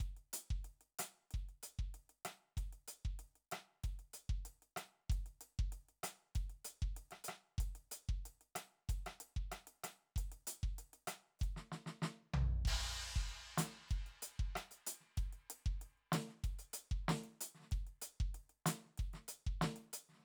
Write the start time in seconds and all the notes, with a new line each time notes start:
0.01 kick, closed hi-hat
0.17 closed hi-hat
0.33 closed hi-hat
0.51 kick
0.65 closed hi-hat
0.81 closed hi-hat
0.99 closed hi-hat, cross-stick
1.31 kick, closed hi-hat
1.49 closed hi-hat
1.63 closed hi-hat
1.79 kick
1.94 closed hi-hat
2.10 closed hi-hat
2.25 cross-stick, closed hi-hat
2.57 kick, closed hi-hat
2.73 closed hi-hat
2.88 closed hi-hat
3.05 kick
3.19 closed hi-hat
3.36 closed hi-hat
3.52 cross-stick, closed hi-hat
3.84 kick, closed hi-hat
3.99 closed hi-hat
4.14 closed hi-hat
4.30 kick
4.46 closed hi-hat
4.62 closed hi-hat
4.77 cross-stick, closed hi-hat
5.10 kick, closed hi-hat
5.26 closed hi-hat
5.41 closed hi-hat
5.59 kick
5.72 closed hi-hat
5.89 closed hi-hat
6.04 closed hi-hat, cross-stick
6.35 kick, closed hi-hat
6.50 closed hi-hat
6.65 closed hi-hat
6.82 kick
6.97 closed hi-hat
7.11 cross-stick, closed hi-hat
7.24 closed hi-hat
7.29 cross-stick
7.58 kick, closed hi-hat
7.76 closed hi-hat
7.92 closed hi-hat
8.09 kick
8.26 closed hi-hat
8.41 closed hi-hat
8.56 cross-stick, closed hi-hat
8.89 kick, closed hi-hat
9.06 cross-stick, closed hi-hat
9.21 closed hi-hat
9.37 kick
9.52 cross-stick, closed hi-hat
9.67 closed hi-hat
9.84 cross-stick, closed hi-hat
10.16 kick, closed hi-hat
10.32 closed hi-hat
10.47 closed hi-hat
10.63 kick
10.79 closed hi-hat
10.94 closed hi-hat
11.08 open hi-hat, cross-stick
11.39 kick, hi-hat pedal
11.44 closed hi-hat
11.57 snare
11.72 snare
11.86 snare
12.02 snare
12.34 floor tom
12.65 kick, ride
13.16 kick
13.29 closed hi-hat
13.42 closed hi-hat
13.58 open hi-hat, snare
13.63 snare
13.88 kick, closed hi-hat, hi-hat pedal
14.07 closed hi-hat
14.22 closed hi-hat
14.40 kick
14.56 cross-stick, closed hi-hat
14.71 closed hi-hat
14.87 closed hi-hat
15.01 snare
15.18 kick, closed hi-hat
15.33 closed hi-hat
15.50 closed hi-hat
15.66 kick
15.82 closed hi-hat
15.98 closed hi-hat
16.12 snare, closed hi-hat
16.29 snare
16.35 snare
16.44 kick, closed hi-hat
16.59 closed hi-hat
16.74 closed hi-hat
16.91 kick
17.09 snare, closed hi-hat
17.24 closed hi-hat
17.41 closed hi-hat
17.55 snare
17.59 snare
17.62 snare
17.72 kick, closed hi-hat
17.87 closed hi-hat
18.02 closed hi-hat
18.20 kick
18.35 closed hi-hat
18.50 closed hi-hat
18.66 closed hi-hat, snare
18.85 snare
18.98 kick, closed hi-hat
19.14 snare, closed hi-hat
19.28 closed hi-hat
19.47 kick
19.62 snare, closed hi-hat
19.76 closed hi-hat
19.93 closed hi-hat
20.09 snare
20.12 snare
20.15 snare
20.18 snare